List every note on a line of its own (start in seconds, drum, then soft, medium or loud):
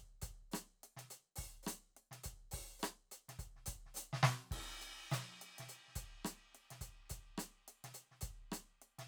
0.22 closed hi-hat medium
0.22 kick soft
0.51 closed hi-hat medium
0.51 cross-stick medium
0.51 hi-hat pedal medium
0.83 closed hi-hat medium
0.97 snare soft
0.97 closed hi-hat medium
1.10 closed hi-hat medium
1.36 open hi-hat medium
1.36 kick soft
1.63 cross-stick medium
1.63 hi-hat pedal medium
1.68 closed hi-hat loud
1.97 closed hi-hat soft
2.11 snare soft
2.11 closed hi-hat medium
2.24 closed hi-hat medium
2.24 kick soft
2.51 open hi-hat medium
2.51 kick soft
2.79 cross-stick medium
2.79 hi-hat pedal medium
2.83 closed hi-hat medium
3.11 closed hi-hat medium
3.29 snare soft
3.29 closed hi-hat medium
3.39 closed hi-hat medium
3.39 kick soft
3.56 snare soft
3.66 closed hi-hat medium
3.66 kick soft
3.86 snare soft
3.94 closed hi-hat loud
3.94 hi-hat pedal medium
4.13 snare medium
4.23 snare loud
4.51 kick soft
4.51 crash medium
4.81 closed hi-hat medium
5.11 closed hi-hat medium
5.11 snare medium
5.11 hi-hat pedal medium
5.41 closed hi-hat medium
5.58 snare soft
5.58 closed hi-hat medium
5.69 closed hi-hat medium
5.88 snare soft
5.95 closed hi-hat medium
5.95 kick soft
6.25 closed hi-hat medium
6.25 cross-stick medium
6.55 closed hi-hat soft
6.70 snare soft
6.70 closed hi-hat medium
6.81 closed hi-hat medium
6.81 kick soft
7.10 closed hi-hat medium
7.10 kick soft
7.38 closed hi-hat medium
7.38 cross-stick medium
7.68 closed hi-hat medium
7.84 snare soft
7.84 closed hi-hat medium
7.94 closed hi-hat medium
8.11 snare soft
8.21 closed hi-hat medium
8.21 kick soft
8.52 closed hi-hat medium
8.52 cross-stick medium
8.82 closed hi-hat soft
8.99 snare soft
8.99 closed hi-hat medium